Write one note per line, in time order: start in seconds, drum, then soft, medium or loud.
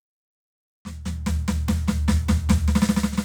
0.86 snare medium
0.86 floor tom medium
1.06 snare medium
1.06 floor tom medium
1.27 snare loud
1.27 floor tom loud
1.49 snare loud
1.49 floor tom loud
1.69 snare loud
1.69 floor tom loud
1.89 snare loud
1.89 floor tom loud
2.09 snare loud
2.09 floor tom loud
2.29 snare loud
2.29 floor tom loud
2.50 snare loud
2.50 floor tom loud
2.69 snare medium
2.76 snare loud
2.83 snare loud
2.90 snare loud
2.97 snare loud
3.04 snare loud
3.13 snare medium
3.19 snare loud